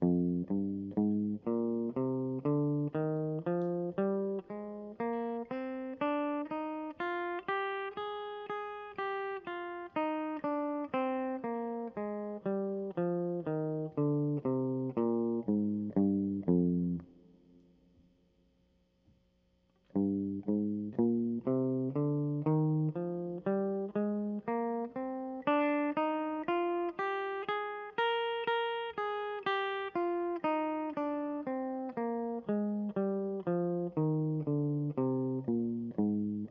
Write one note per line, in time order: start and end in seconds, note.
0.05 0.51 F2
0.53 0.96 G2
0.99 1.40 G#2
1.49 1.94 A#2
1.98 2.43 C3
2.47 2.92 D3
2.96 3.43 D#3
3.48 3.94 F3
3.99 4.43 G3
4.51 4.96 G#3
5.01 5.46 A#3
5.52 5.97 C4
6.02 6.51 D4
6.52 6.94 D#4
7.01 7.42 F4
7.49 7.96 G4
7.98 8.50 G#4
8.50 8.96 G#4
8.99 9.41 G4
9.48 9.90 F4
9.97 10.41 D#4
10.45 10.89 D4
10.95 11.43 C4
11.45 11.92 A#3
11.98 12.42 G#3
12.47 12.95 G3
12.99 13.45 F3
13.48 13.90 D#3
13.99 14.42 D3
14.47 14.94 C3
14.99 15.45 A#2
15.51 15.96 G#2
15.99 16.45 G2
16.51 17.02 F2
19.98 20.46 G2
20.51 20.99 G#2
21.01 21.43 A#2
21.49 21.94 C3
21.97 22.46 D3
22.48 22.94 D#3
22.97 23.42 F3
23.48 23.92 G3
23.97 24.43 G#3
24.49 24.90 A#3
24.97 25.45 C4
25.48 25.96 D4
25.98 26.46 D#4
26.49 26.93 F4
27.00 27.47 G4
27.49 27.93 G#4
27.99 28.47 A#4
28.48 28.95 A#4
28.99 29.45 G#4
29.47 29.92 G4
29.96 30.40 F4
30.45 30.95 D#4
30.98 31.47 D4
31.48 31.94 C4
31.98 32.43 A#3
32.50 32.94 G#3
32.98 33.45 G3
33.48 33.91 F3
33.99 34.45 D#3
34.49 34.96 D3
34.99 35.45 C3
35.50 35.96 A#2
36.02 36.49 G#2